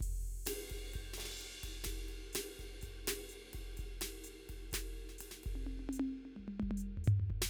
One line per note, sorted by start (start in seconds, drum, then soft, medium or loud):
0.01 kick soft
0.01 crash medium
0.07 kick soft
0.46 snare medium
0.46 hi-hat pedal medium
0.46 ride loud
0.70 kick soft
0.70 ride soft
0.77 kick soft
0.77 snare soft
0.92 kick soft
0.92 hi-hat pedal soft
0.92 ride soft
1.01 kick soft
1.14 snare soft
1.14 ride medium
1.20 snare soft
1.26 snare soft
1.32 snare soft
1.37 snare soft
1.37 hi-hat pedal medium
1.42 snare soft
1.42 ride soft
1.50 snare soft
1.56 snare soft
1.61 kick soft
1.61 snare soft
1.61 ride medium
1.69 kick soft
1.84 kick soft
1.84 snare medium
1.84 hi-hat pedal soft
1.84 ride medium
1.92 kick soft
2.09 ride soft
2.33 snare medium
2.33 hi-hat pedal medium
2.33 ride loud
2.60 kick soft
2.60 snare soft
2.60 ride soft
2.67 snare soft
2.72 snare soft
2.74 snare soft
2.81 kick soft
2.81 hi-hat pedal medium
2.81 ride soft
2.89 kick soft
3.08 snare medium
3.08 ride loud
3.29 hi-hat pedal medium
3.54 kick soft
3.54 ride medium
3.60 kick soft
3.77 kick soft
3.77 hi-hat pedal soft
3.77 ride soft
3.85 kick soft
4.01 snare medium
4.01 ride medium
4.24 hi-hat pedal medium
4.24 ride soft
4.32 snare soft
4.49 kick soft
4.49 ride soft
4.55 kick soft
4.72 kick soft
4.72 snare medium
4.72 hi-hat pedal soft
4.72 ride medium
5.09 snare soft
5.19 hi-hat pedal medium
5.19 ride medium
5.31 snare soft
5.44 kick soft
5.44 ride soft
5.56 high tom soft
5.63 hi-hat pedal soft
5.67 high tom medium
5.80 high tom soft
5.89 hi-hat pedal medium
5.89 high tom medium
6.00 high tom loud
6.25 high tom soft
6.37 kick soft
6.37 mid tom medium
6.48 mid tom medium
6.60 kick soft
6.60 mid tom loud
6.69 kick soft
6.69 mid tom loud
6.78 hi-hat pedal medium
6.98 floor tom medium
7.03 kick soft
7.03 hi-hat pedal medium
7.08 floor tom loud
7.20 floor tom medium
7.30 kick soft
7.30 floor tom medium
7.36 kick soft
7.42 snare loud